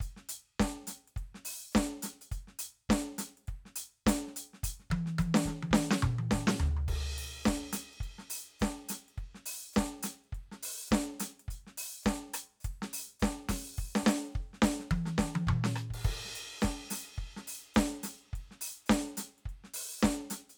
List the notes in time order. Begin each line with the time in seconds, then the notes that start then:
0.01 closed hi-hat, kick
0.17 snare
0.29 closed hi-hat
0.60 kick, snare
0.87 closed hi-hat, snare
1.08 closed hi-hat
1.16 kick
1.35 snare
1.45 open hi-hat
1.72 kick, snare, hi-hat pedal
2.03 closed hi-hat, snare
2.21 closed hi-hat
2.32 closed hi-hat, kick
2.48 snare
2.59 closed hi-hat
2.89 kick, snare
3.18 closed hi-hat, snare
3.38 closed hi-hat
3.48 kick
3.66 snare
3.76 closed hi-hat
4.06 closed hi-hat, kick, snare
4.28 snare
4.36 closed hi-hat
4.54 snare
4.64 closed hi-hat, kick
4.80 snare
4.90 kick, high tom
5.06 snare
5.19 kick, hi-hat pedal, high tom
5.35 snare
5.45 kick, snare
5.63 high tom
5.71 kick, snare
5.91 snare
6.03 kick, mid tom
6.19 high tom
6.31 kick, snare
6.47 snare
6.60 kick, floor tom
6.77 floor tom
6.88 kick, ride
7.18 open hi-hat
7.44 kick, snare, hi-hat pedal
7.73 closed hi-hat, snare
7.93 closed hi-hat
8.01 kick, closed hi-hat
8.19 snare
8.30 open hi-hat
8.60 kick, snare, hi-hat pedal
8.89 closed hi-hat, snare
9.08 closed hi-hat
9.18 kick, closed hi-hat
9.35 snare
9.46 open hi-hat
9.73 snare, hi-hat pedal
9.78 kick
10.03 closed hi-hat, snare
10.24 closed hi-hat
10.33 kick, closed hi-hat
10.52 snare
10.63 open hi-hat
10.88 kick, hi-hat pedal
10.92 snare
11.20 closed hi-hat, snare
11.40 closed hi-hat
11.48 closed hi-hat, kick
11.67 snare
11.78 open hi-hat
12.03 kick, snare, hi-hat pedal
12.34 closed hi-hat, cross-stick
12.60 hi-hat pedal
12.65 kick, closed hi-hat
12.82 snare
12.93 open hi-hat
13.20 kick, snare, hi-hat pedal
13.49 open hi-hat, kick, snare
13.78 kick, open hi-hat
13.95 snare
14.03 kick, snare
14.35 kick
14.53 snare
14.62 kick, snare
14.80 snare
14.91 kick, hi-hat pedal, high tom
15.06 snare
15.18 kick, snare
15.35 high tom
15.47 kick, mid tom
15.64 snare
15.76 cross-stick
15.91 kick, crash
16.05 kick, ride
16.25 snare
16.35 closed hi-hat
16.62 kick, snare, hi-hat pedal
16.90 open hi-hat, snare
17.13 hi-hat pedal
17.18 kick, closed hi-hat
17.37 snare
17.48 open hi-hat
17.74 kick, snare, hi-hat pedal
18.03 open hi-hat, snare
18.33 kick, closed hi-hat
18.51 snare
18.61 open hi-hat
18.86 kick, snare, hi-hat pedal
19.17 open hi-hat, snare
19.38 closed hi-hat
19.46 kick, closed hi-hat
19.64 snare
19.74 open hi-hat
20.00 snare, hi-hat pedal
20.04 kick
20.30 closed hi-hat, snare
20.50 closed hi-hat